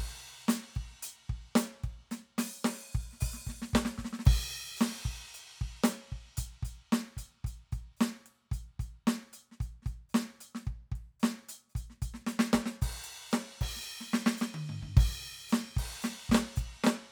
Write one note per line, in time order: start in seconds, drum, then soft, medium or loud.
0.15 closed hi-hat soft
0.49 closed hi-hat loud
0.49 snare loud
0.76 kick medium
0.76 closed hi-hat soft
1.03 closed hi-hat loud
1.30 kick medium
1.56 closed hi-hat loud
1.56 snare loud
1.84 kick medium
1.84 closed hi-hat soft
2.12 closed hi-hat medium
2.12 snare medium
2.39 open hi-hat loud
2.39 snare loud
2.65 open hi-hat loud
2.65 snare loud
2.95 open hi-hat soft
2.95 kick medium
3.13 snare soft
3.21 open hi-hat loud
3.21 kick medium
3.34 snare soft
3.47 kick soft
3.47 snare soft
3.62 snare medium
3.74 kick medium
3.74 snare loud
3.86 snare medium
3.99 kick soft
3.99 snare medium
4.05 snare medium
4.14 snare medium
4.20 snare medium
4.26 kick loud
4.26 crash loud
4.77 hi-hat pedal medium
4.81 snare loud
4.81 crash medium
5.06 kick medium
5.35 closed hi-hat medium
5.57 closed hi-hat soft
5.62 kick medium
5.84 closed hi-hat loud
5.84 snare loud
5.90 snare soft
6.13 kick soft
6.38 closed hi-hat loud
6.38 kick medium
6.63 closed hi-hat medium
6.63 kick medium
6.93 snare loud
7.18 closed hi-hat medium
7.18 kick soft
7.45 closed hi-hat medium
7.45 kick medium
7.73 closed hi-hat soft
7.73 kick medium
7.97 hi-hat pedal soft
8.01 snare loud
8.27 closed hi-hat soft
8.52 closed hi-hat medium
8.52 kick medium
8.80 closed hi-hat soft
8.80 kick medium
9.08 snare loud
9.34 closed hi-hat medium
9.52 snare soft
9.61 closed hi-hat soft
9.61 kick medium
9.83 kick medium
9.83 snare soft
9.87 closed hi-hat soft
10.10 hi-hat pedal soft
10.15 snare loud
10.41 closed hi-hat medium
10.55 snare medium
10.66 kick medium
10.66 closed hi-hat soft
10.66 hi-hat pedal soft
10.92 kick medium
10.92 closed hi-hat soft
11.20 snare loud
11.20 hi-hat pedal soft
11.49 closed hi-hat loud
11.70 hi-hat pedal soft
11.76 closed hi-hat medium
11.76 kick medium
11.91 snare soft
12.03 open hi-hat medium
12.03 kick medium
12.15 snare soft
12.27 snare medium
12.27 hi-hat pedal medium
12.40 snare loud
12.54 kick soft
12.54 snare loud
12.66 snare medium
12.82 kick medium
12.82 hi-hat pedal medium
12.82 crash medium
13.05 closed hi-hat medium
13.32 snare loud
13.32 hi-hat pedal medium
13.62 kick medium
13.62 crash loud
13.77 snare soft
13.82 hi-hat pedal medium
14.01 snare soft
14.14 snare loud
14.27 snare loud
14.38 hi-hat pedal medium
14.42 snare medium
14.55 high tom medium
14.70 floor tom medium
14.82 kick soft
14.82 floor tom medium
14.98 kick loud
14.98 hi-hat pedal medium
14.98 crash loud
15.50 snare loud
15.50 hi-hat pedal medium
15.77 kick medium
15.77 crash medium
16.03 closed hi-hat soft
16.03 snare medium
16.03 hi-hat pedal medium
16.30 kick medium
16.30 snare loud
16.35 snare loud
16.57 kick medium
16.57 hi-hat pedal medium
16.84 snare loud
16.87 snare loud